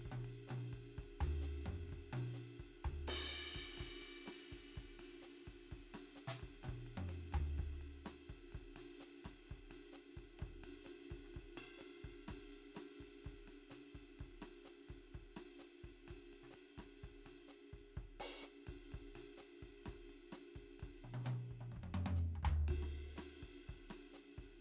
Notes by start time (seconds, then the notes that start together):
0.01 ride
0.05 kick
0.11 kick, high tom
0.25 ride
0.47 hi-hat pedal, high tom, ride
0.73 kick, ride
0.98 kick, ride
1.04 kick
1.21 floor tom, ride
1.41 hi-hat pedal
1.46 ride
1.66 kick, mid tom, ride
1.73 kick
1.89 kick, ride
1.97 kick
2.13 high tom, ride
2.34 hi-hat pedal, ride
2.59 kick, ride
2.84 kick, floor tom, ride
3.07 ride, crash
3.28 hi-hat pedal
3.55 kick, ride
3.61 kick
3.77 kick, snare, ride
3.86 kick
4.02 ride
4.26 cross-stick, hi-hat pedal, ride
4.51 kick, ride
4.76 kick, ride
4.82 kick
4.99 snare, ride
5.22 hi-hat pedal, ride
5.47 kick, ride
5.71 kick, ride
5.77 kick
5.94 cross-stick, ride
6.15 hi-hat pedal, ride
6.27 snare
6.40 kick, ride
6.48 kick
6.63 high tom, ride
6.68 kick
6.74 kick
6.87 ride
6.97 mid tom
7.08 hi-hat pedal, ride
7.33 kick, floor tom, ride
7.39 kick
7.58 kick, ride
7.65 kick
7.72 snare
7.81 ride
8.05 cross-stick, snare, hi-hat pedal, ride
8.29 kick, ride
8.35 kick
8.52 kick, ride
8.60 kick
8.76 snare, ride
9.00 hi-hat pedal, ride
9.25 kick, cross-stick, ride
9.50 kick, ride
9.56 kick
9.70 snare, ride
9.93 hi-hat pedal, ride
10.17 kick, ride
10.39 kick, mid tom, ride
10.43 mid tom
10.47 kick, mid tom
10.64 ride
10.84 hi-hat pedal, ride
11.11 kick, ride
11.16 kick
11.24 snare
11.34 kick, ride
11.41 kick
11.57 snare, ride bell
11.78 hi-hat pedal, ride
12.04 kick, ride
12.28 kick, cross-stick, ride
12.35 kick
12.75 cross-stick, hi-hat pedal, ride
13.00 kick, ride
13.25 kick, ride
13.31 kick
13.48 cross-stick, ride
13.70 snare, hi-hat pedal, ride
13.95 kick, ride
14.19 kick, ride
14.26 kick
14.42 cross-stick, ride
14.65 hi-hat pedal, ride
14.88 kick, snare, ride
15.14 kick, ride
15.20 kick
15.36 cross-stick, ride
15.59 hi-hat pedal, ride
15.84 kick, ride
16.08 kick, snare, ride
16.33 ride
16.43 snare
16.50 hi-hat pedal, ride
16.78 kick, cross-stick, ride
17.03 kick, ride
17.09 kick
17.25 snare, ride
17.48 hi-hat pedal
17.73 kick
17.97 kick, ride
18.20 open hi-hat, ride
18.42 hi-hat pedal
18.67 kick, ride
18.73 kick
18.92 kick, ride
18.99 kick
19.15 snare, ride
19.37 hi-hat pedal, ride
19.62 kick, ride
19.86 kick, cross-stick, ride
19.93 kick
20.09 ride
20.32 cross-stick, hi-hat pedal, ride
20.55 kick, ride
20.80 kick, ride
20.88 kick
21.04 high tom
21.14 high tom
21.25 hi-hat pedal, high tom
21.40 high tom
21.50 kick, high tom
21.61 high tom
21.72 mid tom
21.76 kick
21.81 kick, mid tom
21.94 mid tom
22.06 mid tom
22.16 hi-hat pedal
22.35 floor tom
22.43 kick, floor tom
22.48 kick
22.68 kick, ride
22.76 kick
22.82 cross-stick
23.16 cross-stick, snare, hi-hat pedal, ride
23.43 kick, ride
23.68 kick, ride
23.74 kick
23.90 cross-stick, ride
24.13 hi-hat pedal, ride
24.38 kick, ride